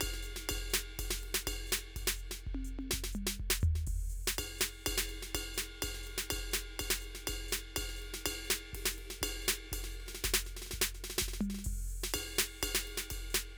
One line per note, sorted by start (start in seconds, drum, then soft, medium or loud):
0.01 kick soft
0.01 ride bell loud
0.09 kick soft
0.14 snare soft
0.23 hi-hat pedal medium
0.23 ride soft
0.36 snare medium
0.49 kick soft
0.49 ride bell loud
0.57 kick soft
0.70 snare loud
0.70 hi-hat pedal medium
0.99 kick soft
0.99 ride bell medium
1.11 snare loud
1.19 hi-hat pedal medium
1.23 ride soft
1.34 snare loud
1.47 kick soft
1.47 ride bell loud
1.53 kick soft
1.67 hi-hat pedal medium
1.72 snare loud
1.79 snare soft
1.96 kick soft
1.96 ride bell medium
2.03 kick soft
2.07 snare loud
2.17 hi-hat pedal medium
2.31 snare medium
2.47 kick soft
2.53 kick soft
2.53 high tom medium
2.65 hi-hat pedal medium
2.79 open hi-hat soft
2.79 high tom medium
2.91 kick soft
2.91 snare loud
3.01 kick soft
3.01 snare medium
3.13 hi-hat pedal medium
3.13 mid tom medium
3.27 snare loud
3.40 kick soft
3.46 kick soft
3.46 snare loud
3.61 floor tom loud
3.61 hi-hat pedal medium
3.76 snare soft
3.87 kick soft
3.87 crash medium
3.94 kick soft
4.10 hi-hat pedal medium
4.28 snare loud
4.39 kick soft
4.39 ride bell loud
4.45 kick soft
4.59 snare loud
4.59 hi-hat pedal medium
4.86 kick soft
4.86 ride bell loud
4.93 kick soft
4.98 snare loud
5.07 hi-hat pedal medium
5.07 ride soft
5.23 snare medium
5.35 kick soft
5.35 ride bell loud
5.41 kick soft
5.54 snare medium
5.54 hi-hat pedal medium
5.82 kick soft
5.82 ride bell loud
5.90 kick soft
5.95 snare soft
6.03 hi-hat pedal medium
6.07 ride soft
6.18 snare medium
6.31 kick soft
6.31 ride bell loud
6.39 kick soft
6.52 snare loud
6.52 hi-hat pedal medium
6.80 kick soft
6.80 ride bell loud
6.90 snare loud
7.00 hi-hat pedal medium
7.00 ride soft
7.15 snare medium
7.27 kick soft
7.27 ride bell loud
7.35 kick soft
7.48 hi-hat pedal medium
7.53 snare medium
7.76 kick soft
7.76 ride bell loud
7.84 kick soft
7.89 snare soft
7.96 hi-hat pedal medium
8.02 ride soft
8.14 snare medium
8.26 kick soft
8.26 ride bell loud
8.45 hi-hat pedal medium
8.50 snare loud
8.73 kick soft
8.73 ride medium
8.86 snare loud
8.93 hi-hat pedal medium
8.98 ride soft
9.10 snare medium
9.22 kick soft
9.22 ride bell loud
9.42 hi-hat pedal medium
9.48 snare loud
9.72 kick soft
9.72 ride bell medium
9.84 snare soft
9.92 hi-hat pedal medium
10.00 snare soft
10.06 snare soft
10.08 snare medium
10.15 snare medium
10.24 kick soft
10.24 snare medium
10.31 kick soft
10.31 snare loud
10.45 snare soft
10.45 hi-hat pedal medium
10.57 snare medium
10.62 snare medium
10.66 snare soft
10.71 kick soft
10.71 snare medium
10.82 snare loud
10.95 snare soft
10.95 hi-hat pedal soft
11.04 snare medium
11.10 snare medium
11.16 snare soft
11.18 kick soft
11.18 snare loud
11.28 kick soft
11.28 snare medium
11.34 snare medium
11.41 hi-hat pedal medium
11.41 mid tom loud
11.50 snare soft
11.55 snare soft
11.59 snare soft
11.65 kick medium
11.65 crash loud
11.73 kick soft
11.78 kick soft
11.89 hi-hat pedal medium
12.04 snare medium
12.14 kick soft
12.14 ride bell loud
12.36 snare loud
12.36 hi-hat pedal medium
12.63 kick soft
12.63 ride bell loud
12.75 snare loud
12.83 hi-hat pedal medium
12.87 ride soft
12.98 snare medium
13.10 kick soft
13.10 ride bell medium
13.30 hi-hat pedal medium
13.35 snare loud